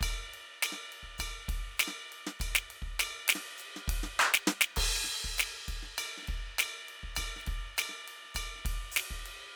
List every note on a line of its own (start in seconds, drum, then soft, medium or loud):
0.01 kick medium
0.01 hi-hat pedal soft
0.01 ride bell loud
0.09 kick soft
0.34 ride soft
0.63 snare medium
0.63 hi-hat pedal soft
0.63 ride bell loud
0.72 snare soft
0.92 ride soft
1.03 kick soft
1.18 kick soft
1.18 snare soft
1.18 hi-hat pedal soft
1.18 ride bell loud
1.49 kick medium
1.49 ride medium
1.60 kick soft
1.78 snare loud
1.78 hi-hat pedal soft
1.78 ride bell loud
1.88 snare soft
2.12 ride soft
2.27 snare medium
2.40 kick soft
2.40 hi-hat pedal soft
2.40 ride bell loud
2.46 kick soft
2.55 snare loud
2.71 ride medium
2.82 kick soft
2.88 kick soft
3.00 snare medium
3.00 hi-hat pedal soft
3.00 ride bell loud
3.28 snare loud
3.28 ride loud
3.35 snare soft
3.58 hi-hat pedal soft
3.58 ride soft
3.77 snare soft
3.88 kick medium
3.88 ride loud
3.96 kick soft
3.99 kick soft
4.04 snare soft
4.19 percussion loud
4.19 hi-hat pedal soft
4.34 snare loud
4.48 snare loud
4.61 snare loud
4.76 kick medium
4.76 hi-hat pedal soft
4.76 crash medium
4.83 kick soft
4.89 kick soft
4.96 snare soft
5.04 snare soft
5.25 kick soft
5.38 snare medium
5.38 hi-hat pedal medium
5.38 ride bell medium
5.68 kick soft
5.68 ride medium
5.83 snare soft
5.98 hi-hat pedal soft
5.98 ride bell loud
6.18 snare soft
6.23 snare soft
6.27 kick soft
6.27 snare soft
6.27 ride soft
6.36 kick soft
6.59 snare medium
6.59 hi-hat pedal medium
6.59 ride bell loud
6.89 ride soft
7.04 kick soft
7.16 kick soft
7.16 snare soft
7.16 hi-hat pedal medium
7.16 ride bell loud
7.37 snare soft
7.40 snare soft
7.46 kick soft
7.46 snare soft
7.46 ride medium
7.54 kick soft
7.58 kick soft
7.77 snare medium
7.77 hi-hat pedal soft
7.77 ride bell loud
7.90 snare soft
8.08 ride medium
8.25 snare soft
8.35 kick soft
8.35 snare soft
8.35 hi-hat pedal medium
8.35 ride bell loud
8.56 snare soft
8.59 snare soft
8.65 kick medium
8.65 ride medium
8.73 kick soft
8.92 hi-hat pedal medium
8.97 snare medium
8.97 ride loud
9.11 kick soft
9.11 snare soft
9.26 ride medium